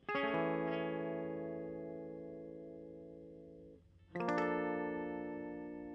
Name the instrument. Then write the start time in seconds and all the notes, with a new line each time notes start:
electric guitar
0.09 G#4
0.15 C#4
0.24 A3
0.35 E3
4.16 F3
4.21 A#3
4.29 D4
4.38 A4